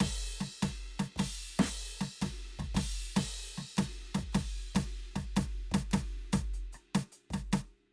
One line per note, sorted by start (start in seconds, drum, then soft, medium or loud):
0.01 kick medium
0.01 snare loud
0.01 crash loud
0.41 snare medium
0.63 kick soft
0.63 snare loud
0.63 ride bell loud
1.00 snare loud
1.17 kick soft
1.17 snare loud
1.17 crash loud
1.60 kick soft
1.60 snare loud
1.60 crash loud
2.01 snare medium
2.22 kick soft
2.22 snare loud
2.22 ride loud
2.60 kick soft
2.60 snare medium
2.75 kick medium
2.75 snare loud
2.75 crash loud
3.16 kick soft
3.16 snare loud
3.16 crash loud
3.58 snare medium
3.78 kick soft
3.78 snare loud
3.78 ride loud
4.15 kick soft
4.15 snare loud
4.33 kick medium
4.33 snare loud
4.33 crash medium
4.75 kick medium
4.75 snare loud
4.75 ride loud
5.16 kick soft
5.16 snare medium
5.37 kick medium
5.37 snare loud
5.37 ride medium
5.72 kick medium
5.72 snare loud
5.92 kick medium
5.92 snare loud
5.92 ride medium
6.33 open hi-hat loud
6.33 kick medium
6.33 snare loud
6.33 hi-hat pedal medium
6.54 closed hi-hat soft
6.73 closed hi-hat medium
6.73 cross-stick medium
6.73 hi-hat pedal soft
6.95 open hi-hat medium
6.95 snare loud
6.95 hi-hat pedal soft
7.13 closed hi-hat medium
7.31 closed hi-hat medium
7.31 kick soft
7.31 snare medium
7.31 hi-hat pedal soft
7.53 open hi-hat medium
7.53 snare loud
7.53 hi-hat pedal soft